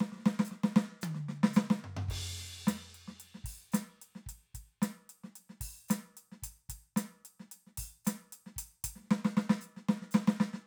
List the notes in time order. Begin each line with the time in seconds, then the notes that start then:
0.01 snare
0.12 snare
0.16 snare
0.19 snare
0.22 snare
0.40 snare
0.45 hi-hat pedal
0.52 snare
0.64 snare
0.76 snare
1.02 hi-hat pedal, high tom
1.15 snare
1.29 snare
1.44 snare
1.54 snare, hi-hat pedal
1.71 snare
1.84 floor tom
1.97 floor tom
2.09 kick, ride
2.68 snare, closed hi-hat
2.95 closed hi-hat
3.08 snare
3.20 closed hi-hat
3.35 snare
3.45 kick, open hi-hat
3.72 snare, closed hi-hat, hi-hat pedal
4.02 closed hi-hat
4.16 snare
4.27 kick, closed hi-hat
4.55 kick, closed hi-hat
4.82 snare, closed hi-hat
5.10 closed hi-hat
5.24 snare
5.36 closed hi-hat
5.50 snare
5.61 kick, open hi-hat
5.89 snare, closed hi-hat, hi-hat pedal
6.17 closed hi-hat
6.32 snare
6.43 kick, closed hi-hat
6.70 kick, closed hi-hat
6.97 snare, closed hi-hat
7.25 closed hi-hat
7.40 snare
7.52 closed hi-hat
7.67 snare
7.78 kick, open hi-hat
8.05 snare, closed hi-hat, hi-hat pedal
8.33 closed hi-hat
8.47 snare
8.57 kick, closed hi-hat
8.84 kick, closed hi-hat
8.96 snare
9.00 snare
9.04 snare
9.11 snare
9.25 snare
9.37 snare
9.50 snare
9.61 hi-hat pedal
9.77 snare
9.89 snare
10.02 snare
10.12 snare, hi-hat pedal
10.28 snare
10.41 snare
10.54 snare